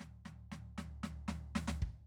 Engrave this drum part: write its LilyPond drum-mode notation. \new DrumStaff \drummode { \time 4/4 \tempo 4 = 116 <sn tomfh>8 <sn tomfh>8 <tomfh sn>8 <sn tomfh>8 <sn tomfh>8 <sn tomfh>8 <sn tomfh>16 <sn tomfh>16 bd8 | }